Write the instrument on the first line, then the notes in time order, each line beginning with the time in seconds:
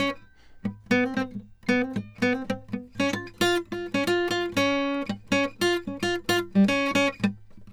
acoustic guitar
0.00 C#4
0.92 B3
1.05 C4
1.18 C4
1.28 B3
1.70 B3
1.83 C4
2.23 B3
2.34 C4
2.51 C4
2.74 B3
3.01 C#4
3.14 F4
3.42 F4
3.73 F4
3.95 C#4
4.08 F4
4.33 F4
4.58 C#4
5.33 C#4
5.62 F4
5.89 C#4
6.04 F4
6.30 F4
6.57 G3
6.70 C#4
6.96 C#4